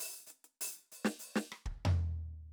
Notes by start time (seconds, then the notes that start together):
0.00 open hi-hat
0.27 closed hi-hat, hi-hat pedal
0.44 closed hi-hat
0.61 open hi-hat
0.92 hi-hat pedal
1.05 snare
1.19 hi-hat pedal
1.36 snare
1.52 cross-stick
1.66 kick
1.85 floor tom